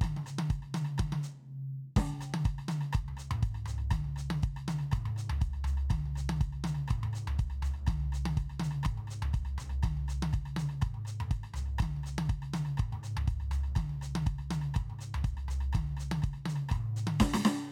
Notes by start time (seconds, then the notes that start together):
0.01 kick, cross-stick, hi-hat pedal, high tom
0.17 high tom
0.21 high tom
0.26 cross-stick, hi-hat pedal
0.39 high tom
0.50 kick, cross-stick, hi-hat pedal
0.62 cross-stick
0.74 hi-hat pedal, high tom
0.85 cross-stick
0.98 kick, cross-stick, hi-hat pedal, high tom
1.12 high tom
1.23 hi-hat pedal
1.96 kick, snare, hi-hat pedal, high tom
2.13 high tom
2.21 cross-stick, hi-hat pedal
2.34 high tom
2.45 kick, cross-stick, hi-hat pedal
2.58 cross-stick
2.68 hi-hat pedal, high tom
2.81 cross-stick
2.93 kick, cross-stick, hi-hat pedal, floor tom
3.08 floor tom
3.17 cross-stick, hi-hat pedal
3.31 mid tom
3.43 kick, cross-stick, hi-hat pedal
3.55 cross-stick
3.66 floor tom, hi-hat pedal
3.78 cross-stick
3.91 kick, cross-stick, hi-hat pedal, high tom
4.04 high tom
4.16 cross-stick, hi-hat pedal
4.30 high tom
4.43 kick, cross-stick, hi-hat pedal
4.56 cross-stick
4.68 hi-hat pedal, high tom
4.79 cross-stick
4.92 kick, cross-stick, hi-hat pedal, mid tom
5.06 mid tom
5.16 cross-stick, hi-hat pedal
5.30 floor tom
5.41 kick, cross-stick, hi-hat pedal
5.53 cross-stick
5.64 floor tom, hi-hat pedal
5.77 cross-stick
5.90 kick, cross-stick, hi-hat pedal, high tom
6.06 high tom
6.16 cross-stick, hi-hat pedal
6.29 high tom
6.41 kick, cross-stick, hi-hat pedal
6.53 cross-stick
6.64 hi-hat pedal, high tom
6.75 cross-stick
6.88 kick, cross-stick, hi-hat pedal, mid tom
7.03 mid tom
7.13 cross-stick, hi-hat pedal
7.27 floor tom
7.39 kick, cross-stick, hi-hat pedal
7.50 cross-stick
7.62 floor tom, hi-hat pedal
7.74 cross-stick
7.87 kick, cross-stick, hi-hat pedal, high tom
8.00 high tom
8.03 high tom
8.05 high tom
8.12 cross-stick, hi-hat pedal
8.26 high tom
8.37 kick, cross-stick, hi-hat pedal
8.50 cross-stick
8.60 hi-hat pedal, high tom
8.71 cross-stick
8.83 kick, cross-stick, hi-hat pedal, mid tom
8.98 mid tom
9.07 cross-stick, hi-hat pedal
9.22 floor tom
9.34 kick, cross-stick, hi-hat pedal
9.45 cross-stick
9.58 floor tom, hi-hat pedal
9.70 cross-stick
9.83 kick, cross-stick, hi-hat pedal, high tom
9.97 high tom
10.08 cross-stick, hi-hat pedal
10.23 high tom
10.33 kick, cross-stick, hi-hat pedal
10.46 cross-stick
10.56 hi-hat pedal, high tom
10.69 cross-stick
10.82 kick, cross-stick, hi-hat pedal, mid tom
10.94 mid tom
11.05 cross-stick, hi-hat pedal
11.20 mid tom
11.31 kick, cross-stick, hi-hat pedal
11.44 cross-stick
11.54 floor tom, hi-hat pedal
11.66 cross-stick
11.79 kick, cross-stick, hi-hat pedal, high tom
11.97 high tom
12.03 cross-stick, hi-hat pedal
12.18 high tom
12.29 kick, cross-stick, hi-hat pedal
12.42 cross-stick
12.54 hi-hat pedal, high tom
12.65 cross-stick
12.77 kick, cross-stick, hi-hat pedal, mid tom
12.93 mid tom
13.03 cross-stick, hi-hat pedal
13.17 floor tom
13.28 kick, cross-stick, hi-hat pedal
13.40 cross-stick
13.51 floor tom, hi-hat pedal
13.64 cross-stick
13.76 kick, cross-stick, hi-hat pedal, high tom
13.90 high tom
13.94 high tom
14.02 cross-stick, hi-hat pedal
14.15 high tom
14.26 kick, cross-stick, hi-hat pedal
14.39 cross-stick
14.51 hi-hat pedal, high tom
14.62 cross-stick
14.74 kick, cross-stick, hi-hat pedal, mid tom
14.90 mid tom
14.99 cross-stick, hi-hat pedal
15.14 floor tom
15.24 kick, cross-stick, hi-hat pedal
15.37 cross-stick
15.48 floor tom, hi-hat pedal
15.61 cross-stick
15.73 kick, cross-stick, hi-hat pedal, high tom
15.92 high tom
15.97 cross-stick, hi-hat pedal
16.11 high tom
16.22 kick, cross-stick, hi-hat pedal
16.33 cross-stick
16.46 hi-hat pedal, high tom
16.56 cross-stick
16.69 kick, cross-stick, hi-hat pedal, mid tom
16.96 hi-hat pedal
17.07 high tom
17.19 kick, snare, hi-hat pedal
17.34 snare
17.43 snare, hi-hat pedal